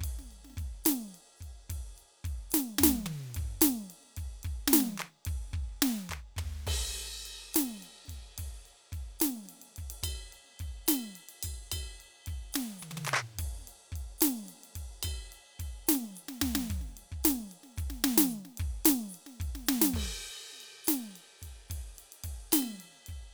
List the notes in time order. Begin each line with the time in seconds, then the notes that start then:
0.01 kick, ride
0.07 kick
0.19 snare
0.31 ride
0.45 snare
0.50 snare
0.54 kick, snare
0.59 ride
0.64 kick
0.84 snare, hi-hat pedal, ride
1.09 hi-hat pedal
1.15 ride
1.36 hi-hat pedal
1.41 kick, ride
1.70 kick, ride
1.76 kick
1.96 hi-hat pedal, ride
2.25 kick, ride
2.31 kick
2.51 snare, hi-hat pedal, ride
2.79 kick, snare
2.84 snare
2.92 snare
3.06 mid tom
3.19 snare
3.24 snare
3.28 snare
3.30 snare, hi-hat pedal
3.35 kick, snare, ride
3.44 kick
3.61 snare, ride
3.90 ride
4.00 snare
4.07 snare
4.17 kick, ride
4.23 kick
4.44 kick, ride
4.51 kick
4.68 snare
4.73 snare
4.81 snare
4.98 percussion
5.26 kick, ride
5.34 kick
5.48 snare
5.51 kick, snare
5.60 kick
5.64 kick
5.82 snare
6.10 kick, percussion
6.37 kick, floor tom
6.67 kick, crash
6.74 kick
7.22 snare
7.26 ride
7.54 snare, hi-hat pedal, ride
7.80 snare, hi-hat pedal, ride
8.06 kick, snare
8.10 ride
8.38 kick, ride
8.44 kick
8.66 ride
8.93 kick, ride
9.19 snare, hi-hat pedal, ride
9.30 snare
9.46 snare, hi-hat pedal, ride
9.54 snare
9.59 snare, ride
9.65 snare
9.77 kick, ride
9.90 ride
10.03 kick, ride bell
10.09 kick
10.33 ride
10.45 snare
10.47 snare
10.60 kick, ride
10.66 kick
10.87 snare, hi-hat pedal, ride bell
11.14 hi-hat pedal, ride
11.21 snare
11.29 ride
11.43 kick, ride bell
11.72 kick, ride bell
11.79 kick
12.01 ride
12.27 kick, ride
12.34 kick
12.53 snare, hi-hat pedal, ride
12.79 hi-hat pedal, mid tom
12.91 mid tom
12.97 mid tom
13.05 percussion, hi-hat pedal
13.14 percussion
13.39 kick, ride
13.51 kick
13.59 snare
13.68 ride
13.92 kick, ride
14.00 kick
14.19 snare, hi-hat pedal, ride
14.46 snare, hi-hat pedal, ride
14.54 snare
14.59 snare
14.63 snare, ride
14.73 kick, hi-hat pedal, ride
15.03 kick, ride bell
15.11 kick
15.31 hi-hat pedal, ride
15.60 kick, ride
15.87 snare, hi-hat pedal, ride
15.95 snare
16.16 hi-hat pedal, ride
16.29 snare
16.40 kick, snare, hi-hat pedal
16.55 snare
16.65 hi-hat pedal
16.70 kick, ride
16.77 kick
16.81 snare
16.89 snare
16.97 ride
17.12 kick
17.24 snare, hi-hat pedal, ride
17.36 snare
17.49 hi-hat pedal, ride
17.64 snare
17.77 kick, hi-hat pedal, ride
17.85 kick
17.90 snare
18.04 snare
18.18 snare
18.28 hi-hat pedal, ride bell
18.45 snare
18.58 kick, ride
18.67 kick
18.85 snare, ride
19.10 hi-hat pedal
19.15 ride
19.27 snare
19.40 kick, ride
19.47 kick
19.55 snare
19.67 snare, hi-hat pedal
19.82 snare
19.94 kick, crash
20.01 kick
20.53 snare
20.61 ride
20.85 snare, hi-hat pedal, ride
21.16 ride
21.39 kick, hi-hat pedal
21.43 ride
21.69 kick, hi-hat pedal, ride
21.76 kick
21.95 hi-hat pedal, ride
22.12 ride
22.23 kick, snare, ride
22.52 snare, hi-hat pedal, ride bell
22.63 snare
22.80 hi-hat pedal, ride
22.92 snare
23.07 kick, ride